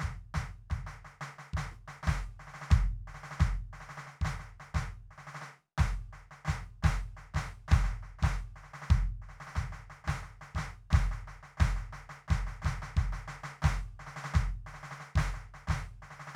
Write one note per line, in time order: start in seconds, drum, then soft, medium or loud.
0.01 kick soft
0.01 snare medium
0.36 kick medium
0.36 snare medium
0.72 kick medium
0.72 snare soft
0.88 snare soft
1.06 snare soft
1.22 snare medium
1.40 snare soft
1.55 kick medium
1.55 snare soft
1.58 snare medium
1.73 cross-stick soft
1.89 snare soft
2.04 snare medium
2.09 kick medium
2.09 snare medium
2.41 snare soft
2.49 snare soft
2.55 snare soft
2.63 snare soft
2.72 kick loud
2.72 snare medium
3.09 snare soft
3.16 snare soft
3.25 snare soft
3.32 snare soft
3.41 kick medium
3.41 snare medium
3.74 snare soft
3.82 snare soft
3.90 snare soft
3.99 snare soft
4.08 snare soft
4.23 kick medium
4.23 snare soft
4.26 snare medium
4.41 snare soft
4.61 snare soft
4.76 kick medium
4.76 snare medium
5.12 snare soft
5.19 snare soft
5.28 snare soft
5.36 snare soft
5.43 snare soft
5.79 kick medium
5.79 snare medium
6.14 snare soft
6.32 snare soft
6.46 snare soft
6.49 kick medium
6.49 snare medium
6.84 kick medium
6.84 snare soft
6.86 snare medium
7.18 snare soft
7.35 kick medium
7.35 snare soft
7.37 snare medium
7.69 snare soft
7.73 kick loud
7.73 snare medium
7.85 snare soft
8.04 snare soft
8.20 kick medium
8.20 snare soft
8.25 snare medium
8.57 snare soft
8.65 snare soft
8.75 snare soft
8.83 snare soft
8.92 kick loud
8.92 snare medium
9.23 snare soft
9.30 snare soft
9.42 snare soft
9.48 snare soft
9.57 kick medium
9.57 snare medium
9.74 snare soft
9.91 snare soft
10.06 kick soft
10.06 snare soft
10.09 snare medium
10.24 snare soft
10.43 snare soft
10.56 kick soft
10.56 snare soft
10.59 snare medium
10.92 kick loud
10.92 snare soft
10.95 snare medium
11.13 snare soft
11.29 snare soft
11.44 snare soft
11.59 snare soft
11.61 kick medium
11.61 snare medium
11.78 snare soft
11.94 snare soft
12.11 snare soft
12.29 kick medium
12.29 snare soft
12.32 snare medium
12.48 snare soft
12.63 kick medium
12.63 snare soft
12.67 snare medium
12.83 snare soft
12.98 kick medium
12.98 snare soft
13.14 snare soft
13.29 snare medium
13.45 snare medium
13.63 kick medium
13.63 snare medium
13.65 snare medium
14.01 snare soft
14.08 snare soft
14.18 snare medium
14.25 snare medium
14.35 kick medium
14.35 snare medium
14.68 snare soft
14.75 snare soft
14.85 snare soft
14.92 snare soft
15.01 snare soft
15.17 kick medium
15.17 snare soft
15.19 snare medium
15.35 snare soft
15.55 snare soft
15.69 kick medium
15.69 snare soft
15.71 snare medium
16.04 snare soft
16.12 snare soft
16.21 snare soft
16.29 snare soft